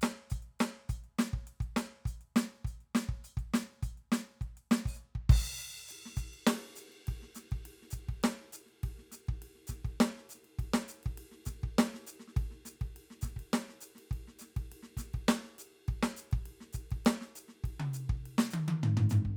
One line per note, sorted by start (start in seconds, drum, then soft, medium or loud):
0.01 closed hi-hat medium
0.01 snare loud
0.30 closed hi-hat medium
0.30 kick medium
0.42 closed hi-hat soft
0.59 closed hi-hat medium
0.59 snare loud
0.89 closed hi-hat medium
0.89 kick medium
0.93 snare soft
1.04 closed hi-hat soft
1.18 closed hi-hat medium
1.18 snare loud
1.33 kick medium
1.47 closed hi-hat soft
1.60 kick medium
1.60 closed hi-hat soft
1.76 closed hi-hat medium
1.76 snare medium
2.05 closed hi-hat soft
2.05 kick medium
2.21 closed hi-hat soft
2.36 closed hi-hat medium
2.36 snare loud
2.50 snare soft
2.64 closed hi-hat soft
2.64 kick medium
2.64 snare soft
2.80 closed hi-hat soft
2.95 closed hi-hat medium
2.95 snare loud
3.09 kick medium
3.24 closed hi-hat medium
3.37 kick medium
3.37 closed hi-hat soft
3.54 closed hi-hat medium
3.54 snare loud
3.67 snare soft
3.82 closed hi-hat medium
3.82 kick medium
3.97 closed hi-hat soft
4.12 closed hi-hat medium
4.12 snare loud
4.41 kick soft
4.41 closed hi-hat soft
4.57 closed hi-hat soft
4.71 snare loud
4.84 open hi-hat medium
4.84 kick medium
4.84 snare soft
4.94 hi-hat pedal soft
5.15 kick soft
5.29 kick loud
5.29 crash loud
5.58 hi-hat pedal medium
5.88 hi-hat pedal medium
5.88 ride medium
6.05 snare soft
6.16 kick medium
6.16 hi-hat pedal medium
6.16 ride soft
6.33 ride soft
6.47 snare loud
6.47 ride loud
6.76 hi-hat pedal medium
6.76 ride soft
6.88 snare soft
6.88 ride soft
7.07 kick medium
7.07 ride medium
7.22 snare soft
7.35 snare soft
7.35 hi-hat pedal medium
7.35 ride soft
7.51 kick medium
7.51 ride soft
7.65 ride medium
7.82 snare soft
7.90 kick soft
7.90 hi-hat pedal medium
7.90 ride soft
8.08 kick soft
8.08 ride soft
8.23 snare loud
8.23 ride medium
8.52 hi-hat pedal medium
8.52 ride soft
8.66 snare soft
8.66 ride soft
8.83 kick medium
8.83 ride medium
8.98 snare soft
9.11 snare soft
9.11 hi-hat pedal medium
9.11 ride soft
9.27 kick medium
9.27 ride soft
9.42 ride medium
9.55 snare soft
9.67 kick soft
9.67 snare soft
9.67 hi-hat pedal medium
9.67 ride soft
9.84 kick medium
9.84 ride soft
10.00 snare loud
10.00 ride soft
10.17 snare soft
10.29 hi-hat pedal medium
10.29 ride soft
10.34 snare soft
10.44 ride soft
10.59 kick medium
10.59 ride soft
10.74 snare loud
10.88 hi-hat pedal medium
10.88 ride soft
11.03 kick medium
11.03 ride soft
11.18 ride medium
11.31 snare soft
11.45 kick soft
11.45 snare soft
11.45 hi-hat pedal medium
11.45 ride soft
11.62 kick medium
11.62 ride soft
11.78 snare loud
11.78 ride medium
11.94 snare soft
12.07 hi-hat pedal medium
12.07 ride soft
12.19 snare soft
12.28 snare soft
12.36 kick medium
12.36 ride soft
12.51 snare soft
12.65 snare soft
12.65 hi-hat pedal medium
12.65 ride soft
12.81 kick medium
12.81 ride soft
12.96 ride medium
13.10 snare soft
13.21 kick medium
13.21 snare soft
13.21 hi-hat pedal medium
13.21 ride soft
13.36 kick soft
13.36 ride soft
13.53 snare loud
13.53 ride medium
13.68 snare soft
13.81 hi-hat pedal medium
13.81 ride medium
13.95 snare soft
13.95 ride soft
14.00 snare soft
14.11 kick medium
14.11 ride soft
14.27 snare soft
14.39 snare soft
14.39 hi-hat pedal medium
14.39 ride soft
14.56 kick medium
14.56 ride soft
14.72 ride medium
14.83 snare soft
14.97 kick soft
14.97 snare soft
14.97 hi-hat pedal medium
14.97 ride soft
15.14 kick medium
15.14 ride soft
15.28 snare loud
15.28 ride medium
15.43 snare soft
15.58 hi-hat pedal medium
15.58 ride medium
15.75 snare soft
15.88 kick medium
15.88 ride soft
16.03 snare loud
16.16 hi-hat pedal medium
16.16 ride soft
16.31 kick medium
16.31 ride soft
16.46 ride medium
16.60 snare soft
16.73 kick soft
16.73 hi-hat pedal medium
16.73 ride soft
16.91 kick medium
16.91 ride soft
17.05 snare loud
17.05 ride soft
17.21 snare soft
17.35 hi-hat pedal medium
17.35 ride soft
17.48 snare soft
17.64 kick medium
17.64 ride soft
17.80 mid tom loud
17.93 hi-hat pedal medium
17.93 ride soft
18.09 kick medium
18.26 ride soft
18.38 snare loud
18.50 hi-hat pedal medium
18.50 high tom loud
18.68 high tom loud
18.83 floor tom loud
18.97 floor tom loud
19.09 floor tom loud
19.09 hi-hat pedal medium
19.25 kick soft